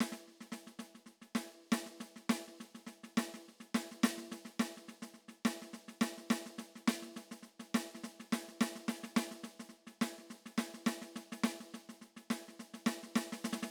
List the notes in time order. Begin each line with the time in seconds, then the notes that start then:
0.00 snare
0.12 snare
0.28 snare
0.41 snare
0.52 snare
0.67 snare
0.79 snare
0.95 snare
1.06 snare
1.22 snare
1.35 snare
1.72 snare
1.86 snare
2.00 snare
2.16 snare
2.29 snare
2.48 snare
2.60 snare
2.75 snare
2.87 snare
3.04 snare
3.17 snare
3.34 snare
3.48 snare
3.60 snare
3.75 snare
3.91 snare
4.03 snare
4.18 snare
4.32 snare
4.45 snare
4.60 snare
4.77 snare
4.88 snare
5.02 snare
5.14 snare
5.28 snare
5.45 snare
5.62 snare
5.73 snare
5.88 snare
6.01 snare
6.18 snare
6.30 snare
6.46 snare
6.58 snare
6.75 snare
6.88 snare
7.02 snare
7.16 snare
7.31 snare
7.43 snare
7.60 snare
7.74 snare
7.95 snare
8.04 snare
8.20 snare
8.32 snare
8.48 snare
8.61 snare
8.75 snare
8.88 snare
9.03 snare
9.16 snare
9.31 snare
9.44 snare
9.60 snare
9.69 snare
9.87 snare
10.01 snare
10.18 snare
10.30 snare
10.46 snare
10.58 snare
10.74 snare
10.86 snare
11.02 snare
11.16 snare
11.32 snare
11.44 snare
11.60 snare
11.74 snare
11.89 snare
12.01 snare
12.17 snare
12.30 snare
12.48 snare
12.59 snare
12.74 snare
12.86 snare
13.03 snare
13.16 snare
13.32 snare
13.44 snare
13.53 snare
13.63 snare